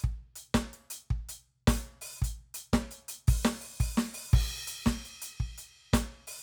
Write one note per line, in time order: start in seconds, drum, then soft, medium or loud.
0.01 kick medium
0.01 hi-hat pedal medium
0.36 closed hi-hat loud
0.55 kick medium
0.55 snare loud
0.74 closed hi-hat medium
0.91 closed hi-hat loud
1.11 kick medium
1.29 closed hi-hat loud
1.68 open hi-hat loud
1.68 kick loud
1.68 snare loud
2.02 open hi-hat loud
2.19 kick medium
2.19 hi-hat pedal medium
2.24 closed hi-hat loud
2.55 closed hi-hat loud
2.73 kick medium
2.73 snare loud
2.91 closed hi-hat medium
3.09 closed hi-hat loud
3.28 open hi-hat loud
3.28 kick loud
3.45 snare loud
3.61 open hi-hat loud
3.80 open hi-hat loud
3.80 kick medium
3.98 snare loud
4.14 open hi-hat loud
4.32 kick loud
4.32 hi-hat pedal medium
4.32 crash loud
4.68 closed hi-hat loud
4.86 kick medium
4.86 snare loud
5.05 closed hi-hat medium
5.22 closed hi-hat loud
5.40 kick medium
5.58 closed hi-hat medium
5.93 open hi-hat loud
5.93 kick medium
5.93 snare loud
6.28 open hi-hat loud